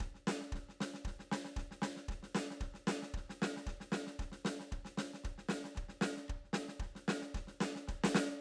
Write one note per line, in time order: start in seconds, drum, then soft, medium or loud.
0.00 kick soft
0.00 snare soft
0.14 snare soft
0.27 snare medium
0.41 snare soft
0.52 kick soft
0.52 snare soft
0.69 snare soft
0.80 snare medium
0.94 snare soft
1.05 kick soft
1.05 snare soft
1.19 snare soft
1.32 snare medium
1.45 snare soft
1.56 kick soft
1.56 snare soft
1.71 snare soft
1.82 snare medium
1.96 snare soft
2.08 kick soft
2.08 snare soft
2.23 snare soft
2.35 snare medium
2.50 snare soft
2.61 kick soft
2.61 snare soft
2.74 snare soft
2.87 snare medium
3.02 snare soft
3.14 kick soft
3.14 snare soft
3.29 snare soft
3.42 snare medium
3.56 snare soft
3.67 kick soft
3.67 snare soft
3.80 snare soft
3.92 snare medium
4.07 snare soft
4.19 kick soft
4.19 snare soft
4.32 snare soft
4.45 snare medium
4.60 snare soft
4.71 kick soft
4.71 snare soft
4.85 snare soft
4.97 snare medium
5.14 snare soft
5.25 kick soft
5.38 snare soft
5.49 snare medium
5.64 snare soft
5.75 kick soft
5.75 snare soft
5.89 snare soft
6.01 snare medium
6.17 snare soft
6.28 kick soft
6.28 cross-stick soft
6.44 snare soft
6.53 snare medium
6.68 snare soft
6.80 kick soft
6.80 snare soft
6.95 snare soft
7.08 snare medium
7.22 snare soft
7.34 kick soft
7.34 snare soft
7.47 snare soft
7.61 snare medium
7.75 snare soft
7.88 kick soft
7.88 snare soft
8.04 snare loud
8.15 snare loud
8.32 snare soft